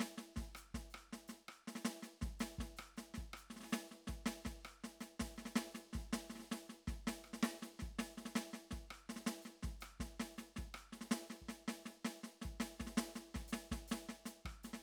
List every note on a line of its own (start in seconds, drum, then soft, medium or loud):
0.01 snare medium
0.19 snare soft
0.37 kick soft
0.37 snare soft
0.39 snare soft
0.56 cross-stick medium
0.56 hi-hat pedal soft
0.75 kick soft
0.75 snare soft
0.91 hi-hat pedal soft
0.95 cross-stick medium
1.14 snare soft
1.29 snare soft
1.29 hi-hat pedal soft
1.49 cross-stick medium
1.68 snare soft
1.76 snare soft
1.86 snare medium
2.03 snare soft
2.03 hi-hat pedal soft
2.22 kick soft
2.22 snare soft
2.40 snare medium
2.40 hi-hat pedal soft
2.59 kick soft
2.59 snare soft
2.78 cross-stick medium
2.78 hi-hat pedal soft
2.98 snare soft
2.98 hi-hat pedal soft
3.15 kick soft
3.15 snare soft
3.34 cross-stick medium
3.34 hi-hat pedal soft
3.51 snare soft
3.57 snare soft
3.61 snare soft
3.64 snare soft
3.71 snare medium
3.71 hi-hat pedal soft
3.92 snare soft
4.08 kick soft
4.08 snare soft
4.27 snare medium
4.31 hi-hat pedal soft
4.46 kick soft
4.46 snare soft
4.66 cross-stick medium
4.66 hi-hat pedal soft
4.85 snare soft
5.01 snare soft
5.01 hi-hat pedal soft
5.20 kick soft
5.20 snare medium
5.37 snare soft
5.37 hi-hat pedal soft
5.46 snare soft
5.57 snare medium
5.76 snare soft
5.76 hi-hat pedal soft
5.94 snare soft
5.96 kick soft
5.96 snare soft
6.14 snare medium
6.14 hi-hat pedal soft
6.31 snare soft
6.36 snare soft
6.40 snare soft
6.52 snare medium
6.52 hi-hat pedal soft
6.70 snare soft
6.88 kick soft
6.88 snare soft
7.08 snare medium
7.25 cross-stick soft
7.25 hi-hat pedal soft
7.34 snare soft
7.44 snare medium
7.63 snare soft
7.63 hi-hat pedal soft
7.80 kick soft
7.80 snare soft
8.00 snare medium
8.00 hi-hat pedal soft
8.18 snare soft
8.26 snare soft
8.37 hi-hat pedal soft
8.54 snare soft
8.72 kick soft
8.72 snare soft
8.92 cross-stick medium
9.10 snare soft
9.17 snare soft
9.27 snare medium
9.43 snare soft
9.43 hi-hat pedal soft
9.64 kick soft
9.64 snare soft
9.81 cross-stick medium
9.81 hi-hat pedal soft
10.01 kick soft
10.01 snare soft
10.21 snare medium
10.39 snare soft
10.39 hi-hat pedal soft
10.57 kick soft
10.57 snare soft
10.75 cross-stick medium
10.75 hi-hat pedal soft
10.93 snare soft
11.02 snare soft
11.12 snare medium
11.12 hi-hat pedal soft
11.31 snare soft
11.43 kick soft
11.49 snare soft
11.49 hi-hat pedal soft
11.69 snare medium
11.86 snare soft
12.06 snare medium
12.24 snare soft
12.24 hi-hat pedal soft
12.43 kick soft
12.43 snare soft
12.61 snare medium
12.61 hi-hat pedal soft
12.81 kick soft
12.81 snare soft
12.88 snare soft
12.98 snare medium
13.16 snare soft
13.16 hi-hat pedal soft
13.35 kick soft
13.35 snare soft
13.38 snare soft
13.49 hi-hat pedal soft
13.54 snare medium
13.72 kick soft
13.72 snare medium
13.89 snare medium
13.89 hi-hat pedal soft
14.10 snare soft
14.27 snare soft
14.27 hi-hat pedal medium
14.46 kick soft
14.46 cross-stick medium
14.64 snare soft
14.64 hi-hat pedal soft
14.74 snare soft